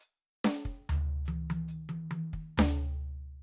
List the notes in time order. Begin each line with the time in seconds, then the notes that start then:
0.00 hi-hat pedal
0.44 snare
0.65 kick
0.89 floor tom
1.25 hi-hat pedal, high tom
1.50 high tom
1.68 hi-hat pedal
1.89 high tom
2.11 high tom
2.33 kick
2.57 snare, floor tom